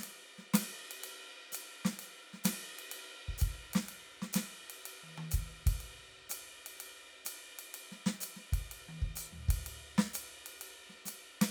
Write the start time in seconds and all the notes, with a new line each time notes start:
0.01 hi-hat pedal, ride
0.39 snare
0.54 snare, hi-hat pedal, ride
0.91 ride
1.02 hi-hat pedal, ride
1.53 hi-hat pedal, ride
1.85 snare, ride
2.00 hi-hat pedal, ride
2.34 snare
2.44 snare, hi-hat pedal, ride
2.79 ride
2.90 hi-hat pedal, ride
3.29 kick
3.39 kick, hi-hat pedal, ride
3.74 snare, ride
3.85 hi-hat pedal
3.89 ride
4.22 snare
4.33 snare, hi-hat pedal, ride
4.70 ride
4.79 hi-hat pedal
4.86 ride
5.04 high tom
5.18 high tom
5.32 kick, hi-hat pedal, ride
5.67 kick, ride
5.81 ride
6.30 hi-hat pedal, ride
6.67 ride
6.77 hi-hat pedal, ride
7.26 hi-hat pedal, ride
7.59 ride
7.75 ride
7.92 snare
8.07 snare
8.21 hi-hat pedal, ride
8.37 snare
8.53 kick, ride
8.72 ride
8.89 high tom
9.02 kick
9.16 hi-hat pedal, ride
9.33 floor tom
9.49 kick, ride
9.63 hi-hat pedal, ride
9.99 snare
10.14 hi-hat pedal, ride
10.47 ride
10.58 hi-hat pedal, ride
10.90 snare
11.06 snare, hi-hat pedal, ride
11.42 snare, ride